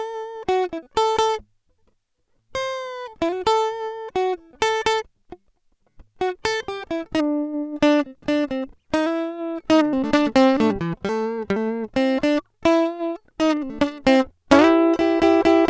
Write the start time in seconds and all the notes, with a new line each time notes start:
0.01 A4
0.50 F#4
0.65 E4
0.98 A4
1.20 A4
2.56 C5
3.07 A4
3.23 F#4
3.48 A4
4.17 F#4
4.34 E4
4.63 A4
4.87 A4
6.22 F#4
6.46 A4
6.61 C5
6.69 G4
6.92 E4
7.16 D4
7.83 D4
8.01 C4
8.29 D4
8.52 C4
8.95 D#4
9.07 E4
9.71 D#4
9.81 D3 D4
9.94 C#4
10.05 A3
10.15 D4
10.28 A3
10.37 C4
10.58 A2 A3 D4
10.72 G3
10.82 E3
11.06 A3
11.15 A3
11.51 G3
11.59 A3
11.97 C4
12.25 D4
12.66 E4
13.41 D#4
13.51 D4
13.63 C4
13.82 D4
14.08 C4 E4
14.52 E4 G4 A4
15.00 E4 G4
15.23 E4 G4
15.46 E4 G4